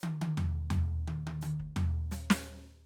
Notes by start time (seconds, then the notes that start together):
0.00 hi-hat pedal, high tom
0.04 closed hi-hat
0.21 high tom
0.37 floor tom
0.70 floor tom, hi-hat pedal
1.08 high tom
1.27 high tom
1.41 hi-hat pedal, high tom
1.60 kick
1.76 floor tom
2.11 snare, hi-hat pedal
2.30 snare